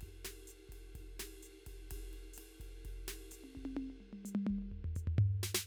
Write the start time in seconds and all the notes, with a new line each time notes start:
0.01 kick, hi-hat pedal, ride
0.08 kick
0.25 snare, ride
0.48 hi-hat pedal, ride
0.70 kick, ride
0.96 kick, hi-hat pedal, ride
1.01 kick
1.20 snare, ride
1.43 hi-hat pedal, ride
1.67 kick, ride
1.91 kick, snare, ride
1.97 kick
2.13 ride
2.34 snare, hi-hat pedal
2.38 ride
2.60 kick, ride
2.85 kick, ride
3.08 snare, ride
3.31 hi-hat pedal, ride
3.44 high tom
3.56 kick, high tom
3.66 high tom
3.77 high tom
3.90 high tom
4.01 mid tom
4.13 mid tom
4.25 hi-hat pedal, mid tom
4.35 mid tom
4.47 kick, mid tom
4.55 kick, mid tom
4.63 mid tom
4.72 floor tom
4.85 floor tom
4.96 floor tom, hi-hat pedal
5.08 floor tom
5.19 floor tom
5.44 snare
5.55 snare